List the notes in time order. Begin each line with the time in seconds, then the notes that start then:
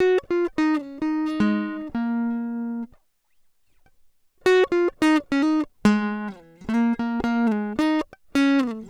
0.01 F#4
0.32 F4
0.59 D#4
0.76 C#4
1.03 D#4
1.41 G#3
1.96 A#3
4.47 F#4
4.73 F4
5.03 D#4
5.33 C#4
5.43 D#4
5.86 G#3
6.29 F#3
6.70 A#3
7.00 A#3
7.25 A#3
7.48 G#3
7.80 D#4
8.36 C#4